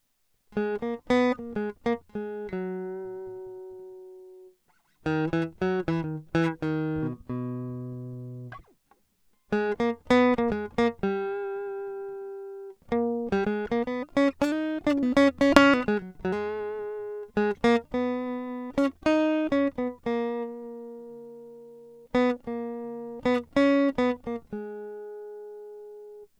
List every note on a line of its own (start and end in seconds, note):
0.58 0.80 G#3
0.83 1.02 A#3
1.11 1.33 B3
1.33 1.59 A#3
1.57 1.75 G#3
1.87 2.05 A#3
2.16 2.50 G#3
2.54 4.58 F#3
5.07 5.32 D#3
5.34 5.53 E3
5.62 5.84 F#3
5.89 6.01 E3
6.02 6.25 D#3
6.35 6.59 E3
6.63 7.16 D#3
7.04 7.18 B2
7.31 8.59 B2
9.53 9.77 G#3
9.81 9.97 A#3
10.11 10.37 B3
10.39 10.56 A#3
10.53 10.70 G#3
10.79 10.99 A#3
11.04 12.76 G3
12.93 13.32 A#3
13.33 13.46 G3
13.49 13.70 G#3
13.72 13.86 A#3
13.88 14.08 B3
14.18 14.34 C#4
14.42 14.53 D4
14.53 14.82 D#4
14.88 15.02 C#4
15.04 15.17 B3
15.18 15.33 C#4
15.42 15.57 C#4
15.57 15.74 C#4
15.75 15.89 B3
15.89 15.98 G#3
15.99 16.06 F#3
16.26 16.34 F#3
16.34 17.32 G#3
17.38 17.57 G#3
17.65 17.85 A#3
17.95 18.74 B3
18.79 18.93 C#4
19.07 19.51 D#4
19.53 19.73 C#4
19.80 19.99 B3
20.07 20.46 A#3
22.15 22.39 B3
22.49 23.22 A#3
23.27 23.44 B3
23.57 23.94 C#4
23.99 24.19 B3
24.28 24.45 A#3
24.54 26.30 G#3